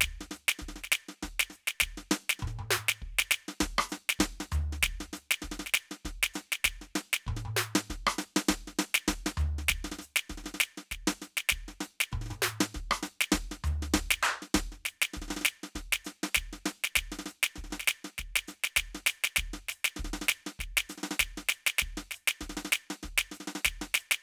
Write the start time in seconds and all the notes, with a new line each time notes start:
0.01 kick, snare
0.21 snare
0.31 snare, hi-hat pedal
0.48 snare
0.59 kick, snare
0.69 snare
0.76 snare
0.84 snare
0.92 snare, hi-hat pedal
1.09 snare
1.23 kick, snare
1.40 snare
1.50 snare, hi-hat pedal
1.68 snare
1.80 kick, snare
1.98 snare
2.11 snare, hi-hat pedal
2.30 snare
2.39 kick, snare, mid tom
2.47 snare
2.59 mid tom
2.71 snare, hi-hat pedal
2.76 mid tom
2.89 snare
3.02 kick
3.19 snare
3.31 snare, hi-hat pedal
3.48 snare
3.60 kick, snare
3.78 cross-stick
3.89 snare, hi-hat pedal
4.09 snare
4.19 kick, snare
4.40 snare
4.52 floor tom, hi-hat pedal
4.73 snare
4.83 kick, snare
4.89 kick
5.01 snare
5.13 snare, hi-hat pedal
5.31 snare
5.42 kick, snare
5.52 snare
5.59 snare
5.66 snare
5.74 snare, hi-hat pedal
5.91 snare
6.05 kick, snare
6.23 snare
6.34 snare, hi-hat pedal
6.52 snare
6.65 kick, snare
6.82 snare
6.96 snare, hi-hat pedal
7.13 snare
7.27 kick, mid tom
7.37 snare
7.45 mid tom
7.57 snare, hi-hat pedal
7.75 snare
7.90 kick, snare
8.07 cross-stick
8.19 snare, hi-hat pedal
8.36 snare
8.49 kick, snare
8.68 snare
8.79 snare, hi-hat pedal
8.95 snare
9.08 kick, snare
9.26 snare
9.37 floor tom, hi-hat pedal
9.59 snare
9.69 kick, snare
9.84 snare
9.92 snare
9.99 snare, hi-hat pedal
10.16 snare
10.30 kick, snare
10.38 snare
10.44 snare
10.46 snare
10.54 snare
10.60 snare, hi-hat pedal
10.78 snare
10.92 kick, snare
11.07 snare
11.22 snare, hi-hat pedal
11.37 snare
11.49 kick, snare
11.68 snare
11.81 snare, hi-hat pedal
12.01 snare
12.12 kick, snare, mid tom
12.21 kick, snare
12.26 snare
12.30 snare, mid tom
12.42 snare
12.46 hi-hat pedal, mid tom
12.61 snare
12.75 kick, snare
12.91 cross-stick
13.03 snare, hi-hat pedal
13.21 snare
13.32 kick, snare
13.39 kick
13.52 snare
13.64 floor tom, hi-hat pedal
13.82 snare
13.94 kick, snare
14.00 kick
14.11 snare
14.23 percussion, hi-hat pedal
14.42 snare
14.54 kick, snare
14.61 kick
14.72 snare
14.85 snare, hi-hat pedal
15.02 snare
15.14 kick, snare
15.22 snare
15.28 snare
15.31 snare
15.37 snare
15.41 snare
15.45 snare, hi-hat pedal
15.64 snare
15.76 kick, snare
15.93 snare
16.05 snare, hi-hat pedal
16.23 snare
16.35 kick, snare
16.53 snare
16.66 snare, hi-hat pedal
16.84 snare
16.96 kick, snare
17.12 snare
17.19 snare
17.26 snare, hi-hat pedal
17.43 snare
17.56 kick, snare
17.64 snare
17.71 snare
17.73 snare
17.80 snare
17.84 snare
17.88 snare, hi-hat pedal
18.05 snare
18.18 kick, snare
18.36 snare
18.48 snare, hi-hat pedal
18.64 snare
18.77 kick, snare
18.95 snare
19.07 snare, hi-hat pedal
19.24 snare
19.36 kick, snare
19.54 snare
19.69 snare, hi-hat pedal
19.85 snare
19.96 kick, snare
20.05 kick, snare
20.14 snare
20.22 snare
20.29 snare, hi-hat pedal
20.47 snare
20.59 kick, snare
20.77 snare
20.89 snare, hi-hat pedal
20.98 snare
21.03 snare
21.11 snare
21.20 kick, snare
21.38 snare
21.49 snare, hi-hat pedal
21.67 snare
21.79 kick, snare
21.97 snare
22.11 snare, hi-hat pedal
22.28 snare
22.41 kick, snare
22.50 snare
22.57 snare
22.65 snare
22.72 snare, hi-hat pedal
22.90 snare
23.03 kick, snare
23.18 snare
23.32 snare, hi-hat pedal
23.40 snare
23.48 snare
23.55 snare
23.65 kick, snare
23.82 snare
23.94 snare, hi-hat pedal
24.11 snare